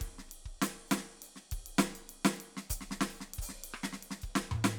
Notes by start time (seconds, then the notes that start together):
0.01 kick, ride
0.08 kick
0.18 snare
0.28 snare, ride
0.46 kick
0.62 snare, hi-hat pedal, ride
0.88 snare, hi-hat pedal, ride
0.97 snare
1.22 hi-hat pedal, ride
1.36 snare
1.52 kick, ride
1.59 kick
1.66 ride
1.79 snare, hi-hat pedal
1.95 ride bell
2.09 ride
2.25 snare
2.33 hi-hat pedal
2.40 ride
2.57 snare
2.70 kick, hi-hat pedal, ride
2.77 kick, snare
3.01 snare
3.10 hi-hat pedal, ride bell
3.21 snare
3.34 ride
3.39 kick, hi-hat pedal
3.45 kick, snare
3.64 ride
3.74 cross-stick
3.83 snare
3.93 snare
4.03 ride
4.11 snare
4.22 kick, ride bell
4.32 kick, snare
4.51 mid tom
4.64 snare